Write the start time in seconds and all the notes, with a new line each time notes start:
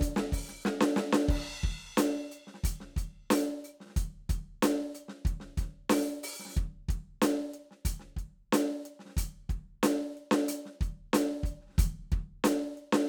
0.01 closed hi-hat, kick
0.16 snare
0.30 open hi-hat, kick, snare
0.48 snare
0.63 snare, hi-hat pedal
0.81 snare
0.96 snare
1.13 snare
1.29 kick, crash
1.49 snare
1.62 kick, closed hi-hat
1.97 closed hi-hat, snare
2.31 closed hi-hat
2.47 snare
2.54 snare
2.64 closed hi-hat, kick
2.80 snare
2.96 closed hi-hat, kick
3.30 open hi-hat, snare
3.64 open hi-hat, hi-hat pedal
3.80 snare
3.86 snare
3.89 snare
3.96 closed hi-hat, kick
4.29 closed hi-hat, kick
4.63 closed hi-hat, snare
4.95 closed hi-hat
5.08 snare
5.25 kick, closed hi-hat
5.40 snare
5.57 closed hi-hat, kick, snare
5.90 open hi-hat, snare
5.97 snare
6.23 open hi-hat
6.39 snare
6.45 snare
6.48 snare
6.51 snare, hi-hat pedal
6.57 kick, closed hi-hat
6.89 kick, closed hi-hat
7.22 closed hi-hat, snare
7.54 closed hi-hat
7.71 snare
7.85 closed hi-hat, kick
8.00 snare
8.17 kick, closed hi-hat
8.53 closed hi-hat, snare
8.85 closed hi-hat
8.99 snare
9.05 snare
9.09 snare
9.17 closed hi-hat, kick
9.49 kick, closed hi-hat
9.83 closed hi-hat, snare
10.17 closed hi-hat
10.31 snare
10.48 closed hi-hat
10.65 snare
10.81 closed hi-hat, kick
11.13 closed hi-hat, snare
11.43 closed hi-hat, kick
11.61 snare
11.66 snare
11.69 snare
11.72 snare
11.73 snare
11.78 closed hi-hat, kick
12.12 kick, closed hi-hat
12.44 closed hi-hat, snare
12.51 snare
12.77 closed hi-hat
12.93 snare